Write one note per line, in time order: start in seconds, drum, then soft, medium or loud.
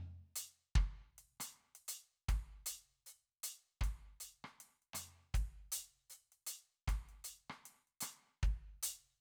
0.36 closed hi-hat medium
0.75 kick medium
0.75 cross-stick medium
1.18 closed hi-hat soft
1.40 closed hi-hat medium
1.40 cross-stick medium
1.75 closed hi-hat soft
1.88 closed hi-hat medium
2.28 kick medium
2.28 cross-stick medium
2.28 closed hi-hat soft
2.66 open hi-hat medium
3.06 closed hi-hat soft
3.06 hi-hat pedal medium
3.43 closed hi-hat medium
3.81 kick medium
3.81 cross-stick medium
3.81 closed hi-hat soft
4.20 closed hi-hat medium
4.44 cross-stick medium
4.60 closed hi-hat soft
4.82 closed hi-hat soft
4.93 closed hi-hat medium
4.93 cross-stick medium
4.93 high tom soft
5.34 kick medium
5.34 closed hi-hat soft
5.72 open hi-hat medium
6.10 hi-hat pedal medium
6.14 closed hi-hat soft
6.32 closed hi-hat soft
6.46 closed hi-hat medium
6.87 kick medium
6.87 cross-stick medium
6.87 closed hi-hat soft
7.09 closed hi-hat soft
7.24 closed hi-hat medium
7.50 cross-stick medium
7.65 closed hi-hat soft
7.87 closed hi-hat soft
8.00 closed hi-hat medium
8.00 cross-stick medium
8.43 kick medium
8.43 closed hi-hat soft
8.83 open hi-hat loud